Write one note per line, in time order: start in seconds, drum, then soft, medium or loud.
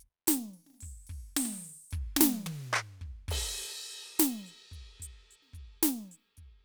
0.01 closed hi-hat soft
0.28 open hi-hat loud
0.28 snare loud
0.38 snare soft
0.54 open hi-hat soft
0.67 snare soft
0.71 snare soft
0.75 snare soft
0.75 hi-hat pedal soft
0.81 open hi-hat soft
0.81 kick soft
1.07 kick soft
1.07 open hi-hat soft
1.37 open hi-hat loud
1.37 snare medium
1.46 snare soft
1.65 open hi-hat soft
1.91 kick soft
1.91 hi-hat pedal soft
1.91 open hi-hat soft
2.00 kick soft
2.17 snare loud
2.22 snare loud
2.30 snare soft
2.43 hi-hat pedal soft
2.43 mid tom medium
2.62 snare soft
2.67 snare soft
2.74 percussion loud
3.02 kick soft
3.29 kick soft
3.29 hi-hat pedal medium
3.29 crash loud
3.35 kick soft
3.78 snare soft
3.91 closed hi-hat medium
4.20 open hi-hat loud
4.20 snare loud
4.47 closed hi-hat soft
4.72 kick soft
4.72 closed hi-hat soft
5.01 closed hi-hat medium
5.01 kick soft
5.31 closed hi-hat soft
5.43 snare soft
5.48 snare soft
5.54 kick soft
5.54 closed hi-hat soft
5.84 closed hi-hat medium
5.84 snare loud
6.12 closed hi-hat soft
6.38 kick soft
6.38 closed hi-hat soft